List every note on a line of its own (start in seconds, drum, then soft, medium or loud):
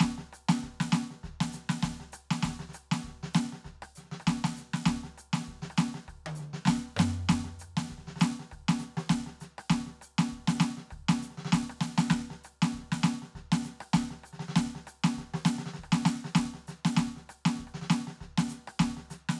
0.01 kick soft
0.01 snare loud
0.19 snare soft
0.34 cross-stick medium
0.34 hi-hat pedal medium
0.50 snare loud
0.64 kick soft
0.64 snare soft
0.81 snare loud
0.93 snare loud
0.93 hi-hat pedal medium
1.12 snare soft
1.24 kick soft
1.24 snare soft
1.41 snare loud
1.54 snare soft
1.54 hi-hat pedal medium
1.70 snare loud
1.84 kick soft
1.84 snare loud
2.01 snare soft
2.13 cross-stick medium
2.13 hi-hat pedal medium
2.32 snare loud
2.44 kick soft
2.44 snare loud
2.49 snare soft
2.60 snare medium
2.70 snare soft
2.74 cross-stick medium
2.74 hi-hat pedal medium
2.92 snare loud
3.05 kick soft
3.05 snare soft
3.24 snare medium
3.35 snare loud
3.35 hi-hat pedal medium
3.53 snare soft
3.66 kick soft
3.66 snare soft
3.83 cross-stick medium
3.96 snare soft
3.96 hi-hat pedal medium
4.05 snare soft
4.09 snare soft
4.13 snare medium
4.21 cross-stick medium
4.28 kick soft
4.28 snare loud
4.45 snare loud
4.57 snare soft
4.57 hi-hat pedal medium
4.74 snare medium
4.87 kick soft
4.87 snare loud
4.94 kick soft
5.04 snare soft
5.19 cross-stick soft
5.19 hi-hat pedal medium
5.34 snare loud
5.40 snare soft
5.49 kick soft
5.49 snare soft
5.55 snare soft
5.59 snare soft
5.63 snare medium
5.71 cross-stick medium
5.78 snare loud
5.78 hi-hat pedal medium
5.95 snare medium
6.09 kick soft
6.09 cross-stick medium
6.27 high tom loud
6.36 hi-hat pedal medium
6.40 snare soft
6.54 snare medium
6.66 snare medium
6.68 kick soft
6.68 snare loud
6.97 snare loud
6.97 hi-hat pedal medium
6.97 floor tom loud
7.30 kick soft
7.30 snare loud
7.45 snare soft
7.60 cross-stick soft
7.60 hi-hat pedal medium
7.78 snare loud
7.90 kick soft
7.90 snare soft
7.99 snare soft
8.05 snare soft
8.08 snare medium
8.17 snare soft
8.17 hi-hat pedal medium
8.22 snare loud
8.40 snare soft
8.52 kick soft
8.52 cross-stick medium
8.69 snare loud
8.80 snare soft
8.80 hi-hat pedal medium
8.98 snare medium
9.10 kick soft
9.10 snare loud
9.27 snare soft
9.41 snare soft
9.41 hi-hat pedal medium
9.59 cross-stick medium
9.71 kick soft
9.71 snare loud
9.87 snare soft
10.02 cross-stick soft
10.02 hi-hat pedal medium
10.19 snare loud
10.32 kick soft
10.32 snare soft
10.48 snare loud
10.56 snare soft
10.61 snare loud
10.61 hi-hat pedal medium
10.78 snare soft
10.92 kick soft
10.92 cross-stick medium
11.09 snare loud
11.23 snare soft
11.23 hi-hat pedal medium
11.31 snare soft
11.39 snare medium
11.46 snare medium
11.53 kick soft
11.53 snare loud
11.70 cross-stick medium
11.82 snare loud
11.82 hi-hat pedal medium
11.99 snare loud
12.11 kick soft
12.11 snare loud
12.31 snare soft
12.45 cross-stick medium
12.45 hi-hat pedal medium
12.63 snare loud
12.75 kick soft
12.75 snare soft
12.93 snare loud
13.04 snare loud
13.04 hi-hat pedal medium
13.23 snare soft
13.36 kick soft
13.36 snare soft
13.53 snare loud
13.65 snare soft
13.65 hi-hat pedal medium
13.81 cross-stick medium
13.94 kick soft
13.94 snare loud
14.11 snare soft
14.24 cross-stick medium
14.24 hi-hat pedal medium
14.34 snare soft
14.40 snare medium
14.49 snare medium
14.57 kick soft
14.57 snare loud
14.76 snare soft
14.88 cross-stick medium
14.88 hi-hat pedal medium
15.05 snare loud
15.19 kick soft
15.19 snare soft
15.35 snare medium
15.46 snare loud
15.46 hi-hat pedal medium
15.59 snare medium
15.67 snare medium
15.75 snare medium
15.80 kick soft
15.84 cross-stick medium
15.93 snare loud
16.06 snare loud
16.06 hi-hat pedal medium
16.25 snare medium
16.36 kick soft
16.36 snare loud
16.55 snare soft
16.68 snare medium
16.68 hi-hat pedal medium
16.86 snare loud
16.98 kick soft
16.98 snare loud
17.17 snare soft
17.30 cross-stick medium
17.30 hi-hat pedal medium
17.46 snare loud
17.58 kick soft
17.58 snare soft
17.68 cross-stick soft
17.75 snare medium
17.82 snare medium
17.91 snare loud
17.91 hi-hat pedal medium
18.08 snare medium
18.22 kick soft
18.22 snare soft
18.39 snare loud
18.50 snare soft
18.50 hi-hat pedal medium
18.68 cross-stick medium
18.80 kick soft
18.80 snare loud
18.98 snare soft
19.11 snare soft
19.11 hi-hat pedal medium
19.30 snare loud